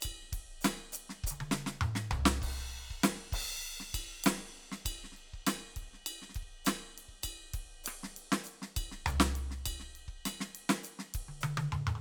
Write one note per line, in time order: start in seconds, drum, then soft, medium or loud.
0.01 hi-hat pedal medium
0.01 ride bell loud
0.05 kick soft
0.11 kick soft
0.22 snare soft
0.28 snare soft
0.33 kick soft
0.33 ride medium
0.39 kick soft
0.43 kick soft
0.61 snare loud
0.61 hi-hat pedal medium
0.61 ride bell loud
0.76 snare soft
0.93 hi-hat pedal loud
0.93 ride medium
1.10 snare medium
1.24 kick medium
1.24 hi-hat pedal loud
1.31 kick soft
1.31 high tom medium
1.38 kick soft
1.38 high tom medium
1.51 snare loud
1.67 snare medium
1.81 mid tom loud
1.96 snare medium
2.11 kick soft
2.11 floor tom loud
2.26 snare loud
2.35 snare soft
2.42 kick medium
2.42 crash medium
2.57 cross-stick soft
2.91 kick soft
3.04 snare loud
3.04 hi-hat pedal medium
3.04 ride loud
3.16 snare soft
3.33 kick medium
3.33 crash loud
3.47 kick soft
3.80 snare soft
3.94 kick soft
3.94 ride bell loud
4.01 kick soft
4.24 snare loud
4.24 hi-hat pedal medium
4.24 ride loud
4.37 snare soft
4.55 ride soft
4.72 snare medium
4.85 kick soft
4.85 hi-hat pedal soft
4.85 ride bell loud
4.96 kick soft
5.04 snare soft
5.12 snare soft
5.17 ride soft
5.34 kick soft
5.47 snare loud
5.47 hi-hat pedal medium
5.47 ride bell loud
5.58 snare soft
5.76 kick soft
5.76 ride medium
5.82 kick soft
5.94 snare soft
6.06 hi-hat pedal soft
6.06 ride bell loud
6.22 snare soft
6.30 snare soft
6.35 kick soft
6.35 ride medium
6.42 kick soft
6.65 snare loud
6.65 hi-hat pedal medium
6.65 ride bell loud
6.98 ride medium
7.09 kick soft
7.13 snare soft
7.18 snare soft
7.23 kick soft
7.23 hi-hat pedal medium
7.23 ride bell loud
7.54 kick soft
7.54 ride medium
7.84 cross-stick medium
7.84 hi-hat pedal medium
7.84 ride loud
8.04 snare medium
8.17 ride medium
8.32 snare loud
8.44 hi-hat pedal medium
8.44 ride medium
8.62 snare medium
8.77 kick medium
8.77 ride bell loud
8.85 kick soft
8.88 kick soft
8.92 snare soft
9.06 hi-hat pedal medium
9.06 floor tom loud
9.20 snare loud
9.36 ride medium
9.51 snare soft
9.66 kick soft
9.66 hi-hat pedal medium
9.66 ride bell loud
9.73 kick soft
9.80 snare soft
9.95 ride soft
10.08 kick soft
10.26 snare medium
10.26 hi-hat pedal medium
10.26 ride bell loud
10.41 snare medium
10.55 ride medium
10.70 snare loud
10.84 hi-hat pedal medium
10.84 ride medium
10.99 snare medium
11.14 kick medium
11.14 ride medium
11.22 kick soft
11.29 high tom medium
11.41 hi-hat pedal medium
11.41 high tom loud
11.58 high tom loud
11.72 mid tom medium
11.87 mid tom loud
11.96 mid tom soft